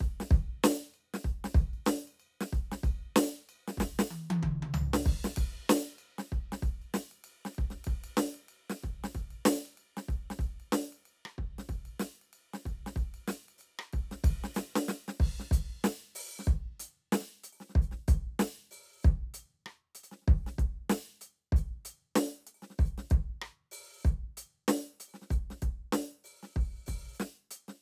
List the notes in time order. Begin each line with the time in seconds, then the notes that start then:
0.01 kick, ride
0.21 snare
0.31 kick, ride bell
0.64 snare, hi-hat pedal
0.94 ride bell
1.14 snare
1.25 kick
1.45 snare
1.55 kick, ride bell
1.74 ride bell
1.86 snare, hi-hat pedal
2.08 ride bell
2.20 ride bell
2.41 snare
2.53 kick, ride
2.72 snare
2.84 kick, ride bell
3.16 snare, hi-hat pedal
3.49 ride bell
3.68 snare
3.78 kick, snare
3.99 snare
4.11 high tom
4.31 high tom
4.43 kick, mid tom
4.63 mid tom
4.74 floor tom
4.94 snare
5.06 kick, crash
5.25 snare
5.37 kick, ride
5.70 snare, hi-hat pedal
5.99 ride bell
6.19 snare
6.33 kick
6.53 snare
6.63 kick, ride
6.82 ride bell
6.94 snare, hi-hat pedal
7.12 ride
7.25 ride
7.46 snare
7.55 kick, ride
7.71 snare
7.85 kick, ride
8.04 ride
8.18 snare, hi-hat pedal
8.35 ride
8.49 ride
8.70 snare
8.83 kick, ride
9.04 snare
9.15 kick, ride
9.31 ride
9.46 snare, hi-hat pedal
9.66 ride
9.78 ride
9.98 snare
10.09 kick, ride
10.31 snare
10.39 kick, ride
10.61 ride
10.73 snare, hi-hat pedal
10.93 ride
11.06 ride
11.26 cross-stick
11.39 kick
11.59 snare
11.69 kick, ride
11.86 ride
12.00 snare, hi-hat pedal
12.22 ride
12.34 ride
12.54 snare
12.66 kick, ride
12.87 snare
12.96 kick, ride
13.15 ride
13.28 snare, hi-hat pedal
13.49 ride
13.59 hi-hat pedal, ride
13.79 cross-stick
13.93 kick, ride
14.12 snare
14.24 kick, ride
14.44 snare
14.55 snare, hi-hat pedal
14.76 snare
14.89 snare
15.09 snare
15.20 kick, crash
15.40 snare
15.52 closed hi-hat, kick
15.85 snare
16.16 open hi-hat
16.40 snare
16.48 kick
16.80 closed hi-hat
17.13 snare
17.21 snare
17.44 closed hi-hat
17.53 open hi-hat
17.61 snare
17.70 snare
17.76 kick
17.82 hi-hat pedal
17.92 snare
18.08 closed hi-hat, kick
18.40 snare
18.71 open hi-hat
19.03 kick, hi-hat pedal
19.34 closed hi-hat
19.67 cross-stick
19.95 closed hi-hat
20.04 closed hi-hat
20.12 snare
20.22 snare
20.28 kick, open hi-hat
20.47 snare, hi-hat pedal
20.59 kick, closed hi-hat
20.90 snare
21.22 open hi-hat
21.53 kick, hi-hat pedal
21.86 closed hi-hat
22.16 snare
22.47 open hi-hat
22.55 open hi-hat
22.63 snare
22.71 snare
22.79 open hi-hat, kick
22.86 hi-hat pedal
22.98 snare
23.11 kick, closed hi-hat
23.42 cross-stick
23.72 open hi-hat
24.05 kick, hi-hat pedal
24.38 closed hi-hat
24.69 snare
25.01 open hi-hat
25.08 open hi-hat
25.14 snare
25.22 snare
25.31 open hi-hat, kick, hi-hat pedal
25.51 snare
25.63 kick, closed hi-hat
25.93 snare
26.25 open hi-hat
26.43 snare
26.57 kick
26.87 open hi-hat, kick
27.15 hi-hat pedal
27.20 snare
27.51 closed hi-hat
27.69 snare